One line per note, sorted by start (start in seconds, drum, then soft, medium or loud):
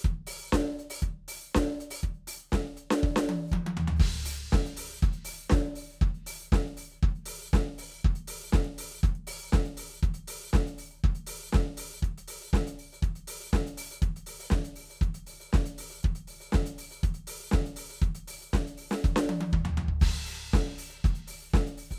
0.01 kick loud
0.01 closed hi-hat soft
0.01 hi-hat pedal soft
0.15 closed hi-hat soft
0.27 open hi-hat loud
0.43 open hi-hat soft
0.49 snare loud
0.49 hi-hat pedal soft
0.53 kick medium
0.79 closed hi-hat soft
0.90 open hi-hat loud
0.99 kick medium
0.99 hi-hat pedal soft
1.04 closed hi-hat soft
1.15 closed hi-hat soft
1.23 kick soft
1.28 open hi-hat loud
1.51 snare loud
1.51 hi-hat pedal soft
1.56 kick medium
1.80 open hi-hat medium
1.91 open hi-hat loud
1.99 closed hi-hat soft
1.99 hi-hat pedal soft
2.03 kick medium
2.14 closed hi-hat soft
2.27 open hi-hat loud
2.49 kick loud
2.49 snare loud
2.49 hi-hat pedal soft
2.67 closed hi-hat soft
2.73 open hi-hat medium
2.73 kick soft
2.91 snare loud
2.98 hi-hat pedal soft
3.03 kick loud
3.16 snare loud
3.29 high tom loud
3.48 hi-hat pedal soft
3.52 kick medium
3.52 high tom loud
3.67 high tom loud
3.77 floor tom loud
3.88 floor tom loud
3.96 kick loud
3.96 hi-hat pedal soft
4.01 crash loud
4.25 open hi-hat loud
4.49 kick loud
4.49 snare loud
4.49 hi-hat pedal soft
4.66 closed hi-hat medium
4.77 open hi-hat loud
4.92 open hi-hat soft
4.97 hi-hat pedal soft
5.02 closed hi-hat soft
5.02 kick loud
5.13 closed hi-hat soft
5.25 open hi-hat loud
5.47 snare loud
5.47 hi-hat pedal soft
5.52 kick loud
5.66 closed hi-hat soft
5.73 open hi-hat medium
5.73 kick soft
5.91 open hi-hat soft
5.96 hi-hat pedal soft
6.01 kick loud
6.01 closed hi-hat soft
6.14 closed hi-hat soft
6.27 open hi-hat loud
6.39 open hi-hat soft
6.47 hi-hat pedal soft
6.52 kick loud
6.52 snare loud
6.67 closed hi-hat soft
6.77 open hi-hat medium
6.91 open hi-hat soft
6.96 hi-hat pedal soft
7.03 kick loud
7.03 closed hi-hat soft
7.15 closed hi-hat soft
7.26 open hi-hat loud
7.41 open hi-hat soft
7.49 hi-hat pedal soft
7.53 kick loud
7.53 snare loud
7.78 open hi-hat loud
7.94 open hi-hat soft
8.00 hi-hat pedal soft
8.05 kick loud
8.05 closed hi-hat soft
8.15 closed hi-hat soft
8.28 open hi-hat loud
8.43 open hi-hat medium
8.49 snare loud
8.49 hi-hat pedal soft
8.54 kick loud
8.65 closed hi-hat soft
8.78 open hi-hat loud
8.92 open hi-hat medium
8.99 hi-hat pedal soft
9.03 closed hi-hat soft
9.03 kick loud
9.15 closed hi-hat soft
9.27 open hi-hat loud
9.44 open hi-hat soft
9.49 snare loud
9.49 hi-hat pedal soft
9.54 kick loud
9.65 closed hi-hat soft
9.73 open hi-hat loud
9.73 kick soft
9.90 open hi-hat soft
9.98 hi-hat pedal soft
10.03 kick loud
10.03 closed hi-hat medium
10.14 closed hi-hat medium
10.28 open hi-hat loud
10.42 open hi-hat soft
10.50 snare loud
10.50 hi-hat pedal soft
10.54 kick loud
10.67 closed hi-hat soft
10.78 open hi-hat medium
10.91 open hi-hat soft
10.99 hi-hat pedal soft
11.04 kick loud
11.04 closed hi-hat soft
11.15 closed hi-hat medium
11.27 open hi-hat loud
11.41 open hi-hat soft
11.49 snare loud
11.49 hi-hat pedal soft
11.55 kick loud
11.67 closed hi-hat soft
11.77 open hi-hat loud
11.92 open hi-hat medium
11.98 hi-hat pedal soft
12.03 kick loud
12.03 closed hi-hat medium
12.18 closed hi-hat medium
12.28 open hi-hat loud
12.42 open hi-hat medium
12.49 hi-hat pedal soft
12.53 kick loud
12.53 snare loud
12.67 closed hi-hat medium
12.72 kick soft
12.79 open hi-hat medium
12.93 open hi-hat medium
12.98 hi-hat pedal soft
13.03 kick loud
13.03 closed hi-hat medium
13.16 closed hi-hat soft
13.28 open hi-hat loud
13.41 open hi-hat medium
13.49 hi-hat pedal soft
13.53 kick loud
13.53 snare loud
13.67 closed hi-hat medium
13.78 open hi-hat loud
13.91 open hi-hat medium
13.97 hi-hat pedal soft
14.02 kick loud
14.02 closed hi-hat medium
14.16 closed hi-hat medium
14.27 open hi-hat loud
14.40 open hi-hat medium
14.47 snare loud
14.47 hi-hat pedal soft
14.52 kick loud
14.64 closed hi-hat medium
14.76 open hi-hat medium
14.89 open hi-hat medium
14.98 kick loud
14.98 hi-hat pedal soft
15.03 closed hi-hat medium
15.14 closed hi-hat medium
15.27 open hi-hat medium
15.40 open hi-hat medium
15.50 kick loud
15.50 snare loud
15.50 hi-hat pedal soft
15.66 closed hi-hat medium
15.78 open hi-hat loud
15.90 open hi-hat medium
16.00 closed hi-hat medium
16.00 hi-hat pedal soft
16.04 kick loud
16.15 closed hi-hat medium
16.28 open hi-hat medium
16.40 open hi-hat medium
16.51 kick loud
16.51 snare loud
16.51 hi-hat pedal soft
16.66 closed hi-hat medium
16.78 open hi-hat loud
16.91 open hi-hat medium
17.00 closed hi-hat medium
17.00 kick loud
17.00 hi-hat pedal soft
17.14 closed hi-hat medium
17.27 open hi-hat loud
17.40 open hi-hat medium
17.49 snare loud
17.49 hi-hat pedal soft
17.54 kick loud
17.66 closed hi-hat soft
17.76 open hi-hat loud
17.89 open hi-hat medium
18.00 kick loud
18.00 closed hi-hat medium
18.00 hi-hat pedal soft
18.15 closed hi-hat medium
18.28 open hi-hat loud
18.41 open hi-hat medium
18.52 kick loud
18.52 snare loud
18.52 hi-hat pedal soft
18.67 closed hi-hat medium
18.78 open hi-hat medium
18.91 snare loud
19.01 closed hi-hat medium
19.01 kick loud
19.01 hi-hat pedal soft
19.16 snare loud
19.29 high tom loud
19.41 high tom loud
19.50 kick loud
19.50 floor tom loud
19.50 hi-hat pedal soft
19.65 floor tom loud
19.77 floor tom loud
19.88 kick medium
20.00 kick loud
20.00 hi-hat pedal soft
20.00 crash loud
20.26 open hi-hat medium
20.50 kick loud
20.50 snare loud
20.50 hi-hat pedal soft
20.71 closed hi-hat soft
20.77 open hi-hat loud
20.77 kick soft
20.89 open hi-hat medium
20.99 hi-hat pedal soft
21.04 closed hi-hat medium
21.04 kick loud
21.15 closed hi-hat soft
21.28 open hi-hat loud
21.40 open hi-hat medium
21.51 kick loud
21.51 snare loud
21.51 hi-hat pedal soft
21.67 closed hi-hat soft
21.78 open hi-hat medium
21.90 open hi-hat medium
21.90 kick medium